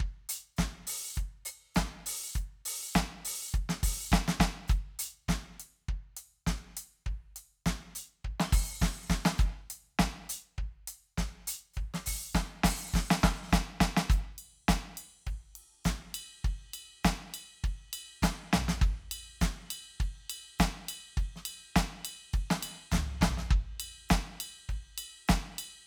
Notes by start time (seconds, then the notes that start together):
0.01 kick
0.30 closed hi-hat
0.57 kick, snare, hi-hat pedal
0.83 kick
0.88 open hi-hat
1.16 kick, hi-hat pedal
1.46 open hi-hat, hi-hat pedal
1.76 kick, snare, hi-hat pedal
2.07 open hi-hat, hi-hat pedal
2.35 kick, hi-hat pedal
2.66 open hi-hat
2.95 kick, snare, hi-hat pedal
3.26 open hi-hat, hi-hat pedal
3.53 kick, closed hi-hat, hi-hat pedal
3.70 snare
3.84 open hi-hat, kick
4.12 kick, snare, hi-hat pedal
4.29 snare
4.41 kick, snare
4.69 kick, hi-hat pedal
5.00 closed hi-hat
5.29 kick, snare
5.61 closed hi-hat
5.89 kick
6.18 closed hi-hat
6.47 kick, snare
6.78 closed hi-hat
7.07 kick, crash, ride
7.37 closed hi-hat
7.67 kick, snare
7.96 closed hi-hat
8.25 kick
8.41 snare
8.53 open hi-hat, kick
8.82 kick, snare
9.11 kick, snare
9.26 snare
9.39 kick, hi-hat pedal
9.71 closed hi-hat
10.00 kick, snare
10.30 closed hi-hat
10.59 kick
10.88 closed hi-hat
11.19 kick, snare
11.46 closed hi-hat, kick
11.75 kick, hi-hat pedal
11.81 crash
11.95 snare
12.07 open hi-hat, kick
12.35 kick, snare
12.64 open hi-hat, kick, snare
12.95 kick, snare
13.11 snare
13.24 kick, snare
13.43 snare
13.48 snare
13.53 kick, snare, hi-hat pedal
13.81 kick, snare
13.98 snare
14.11 kick, hi-hat pedal
14.39 ride bell
14.69 kick, snare, hi-hat pedal
14.98 ride bell
15.28 kick, ride
15.56 ride
15.86 kick, snare, hi-hat pedal, ride
16.15 ride bell
16.45 kick, ride
16.75 ride bell
17.05 kick, snare, hi-hat pedal, ride
17.35 ride bell
17.65 kick, ride
17.94 ride bell
18.23 kick, snare, hi-hat pedal, ride bell
18.54 snare, floor tom
18.69 snare
18.82 kick, snare, ride
19.12 ride bell
19.42 kick, snare, hi-hat pedal, ride
19.62 kick
19.71 ride bell
20.01 kick, ride
20.31 ride bell
20.60 kick, snare, hi-hat pedal
20.89 ride bell
21.18 kick, ride
21.37 snare
21.46 ride bell
21.77 kick, snare, hi-hat pedal
22.06 ride bell
22.34 kick, hi-hat pedal, ride
22.51 snare
22.64 kick, ride bell
22.92 kick, snare, hi-hat pedal, mid tom
23.22 kick, snare, floor tom
23.38 snare
23.52 kick
23.76 kick
23.81 ride bell
23.87 kick
24.10 kick, snare, hi-hat pedal
24.41 ride bell
24.70 kick, ride
24.96 kick, ride bell
25.29 kick, snare, hi-hat pedal, ride
25.59 ride bell